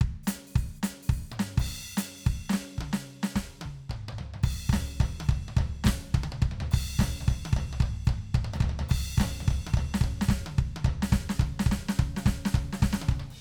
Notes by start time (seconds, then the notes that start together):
0.02 kick
0.23 snare, hi-hat pedal
0.27 closed hi-hat
0.47 open hi-hat
0.55 open hi-hat, kick
0.75 hi-hat pedal
0.83 closed hi-hat, snare
1.03 open hi-hat
1.09 open hi-hat, kick
1.30 hi-hat pedal, mid tom
1.39 snare
1.57 kick, crash
1.90 hi-hat pedal
1.97 closed hi-hat, snare
2.16 open hi-hat
2.24 open hi-hat, kick
2.45 hi-hat pedal
2.49 snare
2.53 snare
2.76 kick, hi-hat pedal
2.81 high tom
2.93 snare
3.23 snare
3.29 hi-hat pedal
3.35 kick, snare
3.61 hi-hat pedal, high tom
3.65 kick
3.89 kick, mid tom
4.08 mid tom
4.12 kick
4.18 floor tom
4.34 floor tom
4.43 kick, crash
4.68 kick, hi-hat pedal
4.73 snare, floor tom
5.00 kick, floor tom
5.20 hi-hat pedal, high tom
5.29 kick, mid tom
5.48 mid tom
5.57 kick, floor tom
5.84 kick, snare, hi-hat pedal
5.87 snare
6.14 kick, high tom
6.23 high tom
6.32 mid tom
6.42 kick, mid tom
6.51 floor tom
6.60 floor tom
6.71 kick, crash
6.97 kick, snare, hi-hat pedal
7.02 floor tom
7.20 floor tom
7.28 kick, floor tom
7.45 hi-hat pedal, high tom
7.53 kick, floor tom
7.73 mid tom
7.80 kick, mid tom
8.04 kick, hi-hat pedal
8.09 mid tom
8.34 kick, mid tom
8.44 mid tom
8.53 floor tom, hi-hat pedal
8.60 kick, floor tom
8.69 floor tom
8.79 floor tom
8.89 kick, crash
9.15 kick, hi-hat pedal
9.20 snare, floor tom
9.40 floor tom
9.48 kick
9.67 hi-hat pedal, high tom
9.74 kick, floor tom
9.94 snare
10.01 kick, mid tom
10.21 snare, hi-hat pedal
10.28 kick, snare
10.46 high tom
10.58 kick
10.76 high tom
10.84 kick, floor tom
11.02 snare
11.06 hi-hat pedal
11.12 kick, snare
11.29 snare
11.39 kick, high tom
11.59 snare, hi-hat pedal
11.66 kick
11.71 snare
11.89 snare
11.93 hi-hat pedal
11.99 kick, high tom
12.16 snare
12.22 kick, hi-hat pedal
12.26 snare
12.45 snare, hi-hat pedal
12.54 kick, high tom
12.73 snare
12.78 hi-hat pedal
12.82 kick, snare
12.93 snare
13.02 high tom
13.08 kick, high tom
13.19 mid tom
13.30 ride